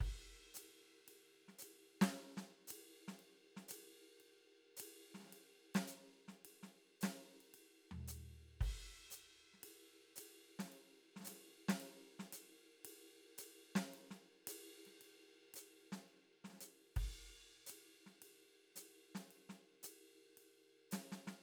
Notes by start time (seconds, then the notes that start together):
0.01 kick, crash
0.55 hi-hat pedal, ride
1.08 ride
1.49 snare
1.59 hi-hat pedal, ride
2.02 snare, ride
2.38 snare
2.68 hi-hat pedal, ride
3.08 snare
3.20 ride
3.57 snare
3.69 hi-hat pedal, ride
4.21 ride
4.77 hi-hat pedal, ride
5.15 snare
5.20 snare
5.23 snare
5.26 snare
5.29 snare
5.33 ride
5.75 snare, ride
5.84 snare
5.88 hi-hat pedal, ride
6.29 snare
6.45 ride
6.63 snare
7.01 snare, hi-hat pedal, ride
7.41 ride
7.55 ride
7.92 floor tom
8.08 hi-hat pedal, ride
8.61 kick, crash
9.11 hi-hat pedal, ride
9.54 snare
9.64 ride
10.16 hi-hat pedal, ride
10.60 snare, ride
10.66 snare
10.73 ride
11.17 snare
11.21 snare
11.24 snare, hi-hat pedal
11.27 snare, ride
11.31 snare
11.69 snare, ride
11.81 ride
12.20 snare
12.33 hi-hat pedal, ride
12.85 ride
13.39 hi-hat pedal, ride
13.76 snare
13.94 ride
14.11 snare
14.48 hi-hat pedal, ride
14.86 snare, ride
14.92 snare
15.02 ride
15.55 hi-hat pedal, ride
15.93 snare
16.09 ride
16.45 snare
16.50 snare
16.53 snare
16.57 snare
16.61 hi-hat pedal, ride
16.97 kick, ride, crash
17.12 ride
17.67 hi-hat pedal, ride
18.07 snare
18.22 ride
18.76 snare, hi-hat pedal, ride
19.15 snare, ride
19.31 ride
19.50 snare
19.84 hi-hat pedal, ride
20.38 ride
20.92 snare, hi-hat pedal, ride
21.12 snare
21.28 snare